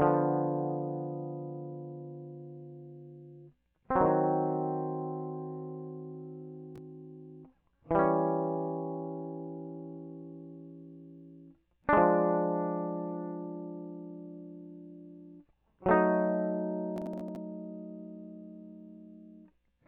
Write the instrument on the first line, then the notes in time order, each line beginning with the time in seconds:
electric guitar
0.00 D3 F3
0.07 B3
3.91 C4
3.97 F#3
4.02 D#3
7.92 E3 G3
8.00 C#4
11.90 D4
11.94 G#3
11.98 F3
15.87 F#3 A3
15.92 D#4 F#5